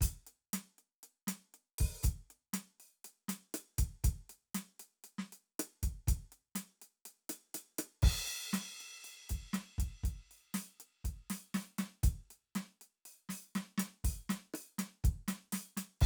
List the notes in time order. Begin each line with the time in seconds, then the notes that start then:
0.01 closed hi-hat, kick
0.27 closed hi-hat
0.53 snare, closed hi-hat
0.78 closed hi-hat
1.03 closed hi-hat
1.27 snare, closed hi-hat
1.54 closed hi-hat
1.78 kick, open hi-hat
2.03 kick, closed hi-hat, hi-hat pedal
2.30 closed hi-hat
2.53 snare, open hi-hat
2.80 open hi-hat
3.04 open hi-hat
3.28 snare, open hi-hat
3.54 cross-stick, open hi-hat
3.78 kick, closed hi-hat
4.04 kick, open hi-hat
4.29 open hi-hat
4.54 snare, open hi-hat
4.79 open hi-hat
5.04 open hi-hat
5.18 snare
5.32 open hi-hat
5.59 cross-stick, closed hi-hat
5.83 kick, closed hi-hat
6.07 kick, closed hi-hat
6.32 open hi-hat
6.55 snare, open hi-hat
6.82 open hi-hat
7.05 open hi-hat
7.29 cross-stick, open hi-hat
7.54 cross-stick, open hi-hat
7.78 cross-stick, closed hi-hat
8.02 kick, crash
8.27 open hi-hat
8.53 snare, open hi-hat
8.80 open hi-hat
9.04 open hi-hat
9.29 kick, open hi-hat
9.53 snare, closed hi-hat
9.78 kick, closed hi-hat
9.82 kick
10.03 kick, open hi-hat
10.31 open hi-hat
10.54 snare, open hi-hat
10.80 closed hi-hat
11.04 kick, open hi-hat
11.30 snare, open hi-hat
11.54 snare, open hi-hat
11.78 snare, open hi-hat
12.03 kick, open hi-hat
12.30 open hi-hat
12.55 snare, open hi-hat
12.81 open hi-hat
13.05 open hi-hat
13.29 open hi-hat, snare
13.55 snare, open hi-hat
13.78 snare, closed hi-hat
14.04 kick, open hi-hat
14.29 snare, open hi-hat
14.54 cross-stick, open hi-hat
14.78 snare, closed hi-hat
15.04 kick, closed hi-hat
15.28 snare, open hi-hat
15.52 snare, open hi-hat
15.77 snare, open hi-hat
16.01 kick, crash